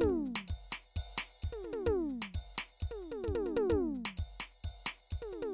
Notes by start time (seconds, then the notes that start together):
0.01 kick, mid tom
0.09 kick, mid tom
0.26 hi-hat pedal
0.36 snare
0.48 kick, ride bell
0.71 snare, hi-hat pedal
0.97 kick, ride
1.16 snare, hi-hat pedal
1.43 kick, ride
1.50 kick, mid tom
1.63 hi-hat pedal, mid tom
1.73 mid tom
1.86 kick, mid tom
2.09 hi-hat pedal
2.22 snare
2.35 kick, ride bell
2.41 kick
2.55 snare, hi-hat pedal
2.81 kick, ride
2.91 mid tom
2.96 ride
3.02 hi-hat pedal
3.12 mid tom
3.24 mid tom
3.28 kick
3.34 kick, mid tom
3.46 hi-hat pedal, mid tom
3.57 mid tom
3.70 kick, mid tom
3.95 hi-hat pedal
4.06 snare
4.18 kick, ride bell
4.40 snare, hi-hat pedal
4.64 kick, ride bell
4.70 kick
4.84 snare, hi-hat pedal
5.11 kick, ride
5.22 mid tom
5.31 hi-hat pedal, mid tom
5.42 mid tom